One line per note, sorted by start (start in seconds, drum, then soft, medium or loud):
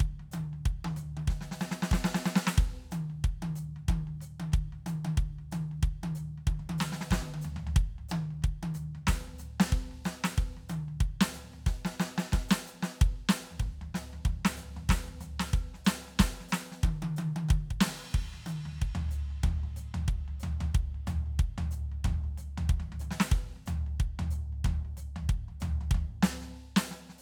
0.01 kick medium
0.01 floor tom soft
0.20 floor tom soft
0.32 hi-hat pedal medium
0.32 high tom loud
0.40 kick soft
0.54 floor tom soft
0.66 kick medium
0.66 floor tom soft
0.85 high tom loud
0.97 floor tom medium
0.97 hi-hat pedal medium
1.18 high tom loud
1.28 kick medium
1.28 snare soft
1.42 snare soft
1.52 snare medium
1.60 snare medium
1.60 hi-hat pedal medium
1.72 snare medium
1.83 snare medium
1.92 kick medium
1.92 snare loud
2.05 snare loud
2.15 snare loud
2.25 snare loud
2.25 hi-hat pedal medium
2.36 snare loud
2.48 snare loud
2.59 kick loud
2.59 floor tom medium
2.83 floor tom soft
2.92 hi-hat pedal medium
2.92 high tom loud
3.11 floor tom soft
3.25 kick medium
3.25 floor tom soft
3.43 high tom loud
3.56 floor tom soft
3.56 hi-hat pedal medium
3.77 floor tom soft
3.89 kick medium
3.89 high tom loud
4.08 floor tom soft
4.21 floor tom soft
4.21 hi-hat pedal medium
4.41 high tom loud
4.53 kick medium
4.53 floor tom medium
4.73 floor tom soft
4.87 hi-hat pedal medium
4.87 high tom loud
5.05 high tom loud
5.18 kick medium
5.18 floor tom medium
5.39 floor tom soft
5.52 hi-hat pedal medium
5.52 high tom loud
5.72 floor tom soft
5.84 kick medium
5.84 floor tom soft
6.04 high tom loud
6.16 floor tom soft
6.16 hi-hat pedal medium
6.38 floor tom soft
6.48 kick medium
6.48 high tom medium
6.60 floor tom medium
6.70 high tom loud
6.79 snare loud
6.79 hi-hat pedal medium
6.93 snare medium
7.02 snare medium
7.11 kick medium
7.11 snare loud
7.23 high tom medium
7.35 high tom medium
7.42 floor tom medium
7.42 hi-hat pedal medium
7.57 floor tom medium
7.68 floor tom medium
7.77 kick loud
7.99 floor tom soft
8.10 hi-hat pedal medium
8.10 high tom loud
8.31 floor tom soft
8.43 kick medium
8.43 floor tom soft
8.64 high tom loud
8.75 floor tom medium
8.75 hi-hat pedal medium
8.96 floor tom medium
9.08 kick medium
9.08 snare loud
9.28 floor tom medium
9.39 floor tom soft
9.39 hi-hat pedal medium
9.61 snare loud
9.73 kick medium
9.73 floor tom soft
9.92 floor tom soft
10.05 kick soft
10.05 snare medium
10.05 hi-hat pedal medium
10.25 snare loud
10.38 kick medium
10.38 floor tom medium
10.57 floor tom soft
10.70 hi-hat pedal medium
10.70 high tom loud
10.89 floor tom soft
11.01 kick medium
11.01 floor tom medium
11.22 snare loud
11.34 floor tom soft
11.34 hi-hat pedal medium
11.54 floor tom soft
11.67 kick medium
11.67 snare medium
11.86 snare medium
12.00 snare loud
12.00 hi-hat pedal medium
12.19 snare loud
12.33 kick medium
12.33 snare medium
12.49 closed hi-hat medium
12.49 snare loud
12.67 hi-hat pedal medium
12.83 snare medium
13.02 kick loud
13.30 snare loud
13.34 hi-hat pedal medium
13.52 floor tom medium
13.60 kick medium
13.60 floor tom medium
13.82 floor tom medium
13.95 snare medium
13.95 hi-hat pedal medium
14.14 floor tom medium
14.26 kick medium
14.26 floor tom medium
14.46 snare loud
14.58 floor tom medium
14.58 hi-hat pedal medium
14.77 floor tom medium
14.90 kick medium
14.90 snare loud
15.09 floor tom medium
15.21 floor tom medium
15.21 hi-hat pedal medium
15.40 snare medium
15.54 kick medium
15.54 floor tom medium
15.75 snare soft
15.85 snare loud
15.85 hi-hat pedal medium
16.08 snare soft
16.20 kick medium
16.20 snare loud
16.41 snare soft
16.49 snare loud
16.49 hi-hat pedal medium
16.72 snare soft
16.84 kick medium
16.84 high tom loud
17.03 high tom loud
17.17 hi-hat pedal medium
17.17 high tom loud
17.37 high tom loud
17.50 kick loud
17.50 high tom loud
17.71 kick medium
17.81 snare loud
17.81 hi-hat pedal medium
17.81 crash medium
17.87 snare medium
18.15 kick medium
18.15 floor tom medium
18.34 floor tom soft
18.47 hi-hat pedal medium
18.47 high tom loud
18.66 floor tom medium
18.79 kick medium
18.79 floor tom soft
18.96 floor tom loud
19.10 floor tom soft
19.10 hi-hat pedal medium
19.31 floor tom soft
19.44 kick medium
19.44 floor tom loud
19.64 floor tom soft
19.77 floor tom soft
19.77 hi-hat pedal medium
19.95 floor tom loud
20.09 kick medium
20.09 floor tom soft
20.29 floor tom soft
20.40 floor tom loud
20.40 hi-hat pedal medium
20.61 floor tom loud
20.75 kick medium
20.75 floor tom soft
20.95 floor tom soft
21.08 floor tom loud
21.08 hi-hat pedal medium
21.27 floor tom soft
21.40 kick medium
21.40 floor tom soft
21.59 floor tom loud
21.72 floor tom soft
21.72 hi-hat pedal medium
21.92 floor tom soft
22.05 kick medium
22.05 floor tom loud
22.24 floor tom soft
22.38 floor tom soft
22.38 hi-hat pedal medium
22.58 floor tom loud
22.70 kick medium
22.70 floor tom medium
22.81 floor tom medium
22.93 floor tom medium
23.00 hi-hat pedal medium
23.00 high tom medium
23.11 snare medium
23.21 snare loud
23.32 kick loud
23.32 floor tom soft
23.57 floor tom soft
23.67 floor tom loud
23.67 hi-hat pedal medium
23.87 floor tom soft
24.01 kick medium
24.01 floor tom soft
24.20 floor tom loud
24.31 floor tom soft
24.31 hi-hat pedal medium
24.53 floor tom soft
24.65 kick medium
24.65 floor tom loud
24.86 floor tom soft
24.98 floor tom soft
24.98 hi-hat pedal medium
25.17 floor tom loud
25.30 kick medium
25.30 floor tom soft
25.49 floor tom soft
25.61 floor tom loud
25.61 hi-hat pedal medium
25.82 floor tom medium
25.92 kick medium
25.92 floor tom loud
26.23 snare loud
26.23 hi-hat pedal medium
26.42 snare soft
26.77 snare loud
26.87 hi-hat pedal medium
26.91 snare soft
27.10 snare soft
27.19 hi-hat pedal medium